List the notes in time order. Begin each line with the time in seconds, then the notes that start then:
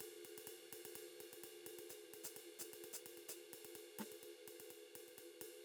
0.01 ride
0.25 ride
0.38 ride
0.47 ride
0.73 ride
0.85 ride
0.96 ride
1.21 ride
1.33 ride
1.44 ride
1.67 ride
1.79 ride
1.90 hi-hat pedal, ride
2.14 ride
2.24 hi-hat pedal, ride
2.37 ride
2.59 hi-hat pedal, ride
2.74 ride
2.84 ride
2.93 hi-hat pedal
3.06 ride
3.18 ride
3.29 hi-hat pedal, ride
3.54 ride
3.65 ride
3.75 ride
3.99 snare, ride
4.12 ride
4.23 ride
4.48 ride
4.60 ride
4.71 ride
4.96 ride
5.08 ride
5.18 ride
5.42 ride